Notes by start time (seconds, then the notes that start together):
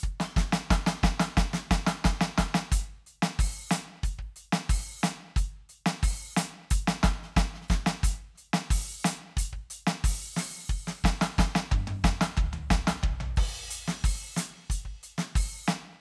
0.01 kick, hi-hat pedal
0.20 snare
0.37 kick, snare
0.53 snare
0.71 kick, snare
0.87 snare
1.03 kick, snare
1.20 snare
1.37 kick, snare
1.54 snare
1.71 kick, snare
1.87 snare
2.05 kick, snare
2.21 snare
2.38 kick, snare
2.55 snare
2.72 closed hi-hat, kick
3.07 closed hi-hat
3.23 snare
3.39 open hi-hat, kick
3.70 closed hi-hat, snare, hi-hat pedal
4.04 closed hi-hat, kick
4.19 kick
4.23 crash
4.36 closed hi-hat
4.53 snare
4.70 open hi-hat, kick
5.01 closed hi-hat, snare, hi-hat pedal
5.37 closed hi-hat, kick
5.69 closed hi-hat
5.86 snare
6.03 open hi-hat, kick
6.33 snare, hi-hat pedal
6.38 closed hi-hat
6.71 closed hi-hat, kick
6.88 snare
7.03 kick, snare
7.23 snare
7.31 snare
7.33 kick, snare, hi-hat pedal
7.37 snare
7.54 snare
7.62 snare
7.69 kick, snare, hi-hat pedal
7.87 snare
8.04 closed hi-hat, kick
8.34 closed hi-hat, snare
8.54 snare
8.71 open hi-hat, kick
9.03 closed hi-hat, snare, hi-hat pedal
9.37 closed hi-hat, kick
9.53 kick
9.70 closed hi-hat
9.87 snare
10.04 open hi-hat, kick
10.37 open hi-hat, snare
10.70 kick
10.88 snare
11.04 kick, snare
11.22 snare
11.39 kick, snare
11.56 snare
11.72 kick, high tom
11.88 high tom
12.04 kick, snare
12.21 snare
12.37 kick, mid tom
12.53 mid tom
12.71 kick, snare
12.87 snare
13.03 kick, floor tom
13.21 floor tom
13.35 kick, hi-hat pedal, crash
13.38 kick
13.68 closed hi-hat, hi-hat pedal
13.88 snare
14.04 open hi-hat, kick
14.37 closed hi-hat, snare, hi-hat pedal
14.70 closed hi-hat, kick
14.85 kick
15.03 closed hi-hat
15.18 snare
15.36 open hi-hat, kick
15.68 snare, hi-hat pedal